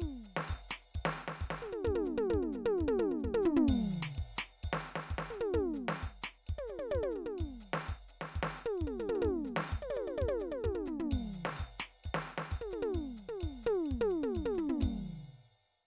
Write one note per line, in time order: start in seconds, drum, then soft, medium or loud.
0.01 kick soft
0.01 ride bell medium
0.24 hi-hat pedal medium
0.24 ride soft
0.37 snare medium
0.44 hi-hat pedal soft
0.48 kick soft
0.48 ride medium
0.69 snare medium
0.69 hi-hat pedal medium
0.89 hi-hat pedal soft
0.95 kick soft
0.95 ride medium
1.05 snare medium
1.15 hi-hat pedal medium
1.15 ride soft
1.28 snare medium
1.35 hi-hat pedal soft
1.40 kick soft
1.40 ride bell medium
1.51 snare medium
1.59 hi-hat pedal medium
1.59 mid tom medium
1.72 mid tom medium
1.84 kick soft
1.84 mid tom loud
1.95 mid tom loud
2.05 hi-hat pedal loud
2.05 mid tom soft
2.17 mid tom loud
2.30 mid tom loud
2.34 kick soft
2.42 mid tom medium
2.53 hi-hat pedal loud
2.53 mid tom medium
2.66 mid tom loud
2.74 hi-hat pedal soft
2.78 kick soft
2.78 mid tom soft
2.88 mid tom loud
2.99 hi-hat pedal loud
2.99 mid tom loud
3.11 mid tom medium
3.19 hi-hat pedal soft
3.24 kick soft
3.24 mid tom medium
3.34 mid tom loud
3.42 floor tom loud
3.42 hi-hat pedal medium
3.56 floor tom loud
3.69 kick medium
3.69 ride loud
3.78 kick soft
3.90 hi-hat pedal loud
3.94 ride medium
4.03 snare medium
4.12 hi-hat pedal soft
4.12 ride bell medium
4.18 kick soft
4.36 snare loud
4.36 hi-hat pedal loud
4.57 hi-hat pedal soft
4.63 kick soft
4.63 ride medium
4.73 snare medium
4.84 hi-hat pedal medium
4.84 ride soft
4.96 snare medium
5.05 hi-hat pedal soft
5.05 ride bell soft
5.11 kick soft
5.19 snare medium
5.28 hi-hat pedal medium
5.28 mid tom medium
5.41 mid tom loud
5.54 kick soft
5.54 mid tom loud
5.74 hi-hat pedal loud
5.74 mid tom soft
5.89 snare medium
5.97 hi-hat pedal soft
5.97 ride bell medium
6.03 kick soft
6.22 snare medium
6.22 hi-hat pedal medium
6.44 hi-hat pedal soft
6.44 ride bell soft
6.49 kick soft
6.58 high tom medium
6.67 hi-hat pedal medium
6.67 high tom soft
6.79 high tom medium
6.91 kick soft
6.91 high tom loud
7.01 kick soft
7.01 high tom medium
7.11 hi-hat pedal medium
7.15 mid tom soft
7.26 mid tom medium
7.38 kick soft
7.38 ride bell medium
7.49 kick soft
7.60 hi-hat pedal loud
7.60 ride soft
7.74 snare medium
7.82 hi-hat pedal soft
7.82 ride bell medium
7.89 kick soft
8.08 hi-hat pedal medium
8.08 ride soft
8.21 snare medium
8.30 hi-hat pedal soft
8.30 ride bell soft
8.36 kick soft
8.43 snare medium
8.53 hi-hat pedal medium
8.53 ride soft
8.66 mid tom loud
8.78 kick soft
8.78 ride bell soft
8.87 mid tom medium
9.00 hi-hat pedal loud
9.00 mid tom medium
9.09 mid tom loud
9.15 mid tom medium
9.22 kick soft
9.22 mid tom loud
9.45 hi-hat pedal medium
9.45 mid tom soft
9.57 snare medium
9.68 hi-hat pedal soft
9.68 ride bell medium
9.72 kick soft
9.81 kick soft
9.81 high tom medium
9.90 high tom medium
9.94 hi-hat pedal loud
9.94 high tom medium
10.07 high tom medium
10.18 high tom loud
10.22 kick soft
10.28 kick soft
10.28 high tom loud
10.40 hi-hat pedal loud
10.40 high tom medium
10.52 high tom medium
10.61 hi-hat pedal soft
10.61 mid tom medium
10.66 kick soft
10.74 kick soft
10.74 mid tom medium
10.86 floor tom medium
10.86 hi-hat pedal loud
10.99 floor tom medium
11.07 hi-hat pedal soft
11.11 kick soft
11.11 ride loud
11.22 kick soft
11.33 hi-hat pedal loud
11.33 ride soft
11.45 snare medium
11.54 hi-hat pedal soft
11.54 ride medium
11.60 kick soft
11.79 snare medium
11.79 hi-hat pedal loud
12.04 kick soft
12.04 ride medium
12.15 snare medium
12.25 hi-hat pedal medium
12.25 ride soft
12.38 snare medium
12.46 hi-hat pedal soft
12.51 kick soft
12.51 ride medium
12.60 kick soft
12.60 mid tom medium
12.71 hi-hat pedal loud
12.71 mid tom medium
12.82 mid tom loud
12.92 kick soft
12.92 hi-hat pedal soft
12.92 ride bell medium
13.17 hi-hat pedal medium
13.17 ride soft
13.29 mid tom medium
13.41 kick soft
13.41 ride medium
13.51 kick soft
13.63 hi-hat pedal loud
13.63 mid tom loud
13.86 ride medium
13.91 kick soft
13.97 kick soft
13.97 mid tom loud
14.10 hi-hat pedal medium
14.10 ride soft
14.23 mid tom medium
14.30 hi-hat pedal soft
14.35 kick soft
14.35 ride medium
14.45 mid tom loud
14.54 floor tom medium
14.54 hi-hat pedal medium
14.69 floor tom medium
14.80 kick medium
14.80 hi-hat pedal loud
14.80 ride medium
14.80 floor tom soft
14.93 kick soft
15.07 hi-hat pedal soft